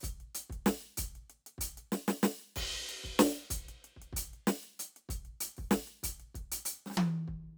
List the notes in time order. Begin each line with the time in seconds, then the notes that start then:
0.01 closed hi-hat, kick, hi-hat pedal
0.21 closed hi-hat
0.35 closed hi-hat
0.50 kick, closed hi-hat
0.66 snare
0.81 closed hi-hat
0.98 closed hi-hat, kick
1.16 closed hi-hat
1.30 closed hi-hat
1.47 closed hi-hat
1.58 closed hi-hat, kick
1.78 closed hi-hat
1.92 snare
2.08 snare
2.23 snare
2.42 closed hi-hat
2.56 kick, ride
2.73 open hi-hat
2.89 closed hi-hat
3.04 kick, closed hi-hat
3.19 snare
3.36 closed hi-hat
3.51 closed hi-hat, kick
3.69 closed hi-hat
3.85 closed hi-hat
3.97 kick
4.02 open hi-hat
4.13 closed hi-hat, kick
4.34 closed hi-hat
4.48 snare
4.63 closed hi-hat
4.80 closed hi-hat
4.97 closed hi-hat
5.09 closed hi-hat, kick
5.25 open hi-hat
5.41 closed hi-hat
5.57 kick, open hi-hat
5.71 snare
5.88 closed hi-hat
6.04 closed hi-hat, kick
6.20 closed hi-hat
6.35 kick, closed hi-hat
6.52 closed hi-hat
6.66 open hi-hat
6.86 snare
6.90 snare
6.93 snare, hi-hat pedal
6.96 snare, high tom
7.28 kick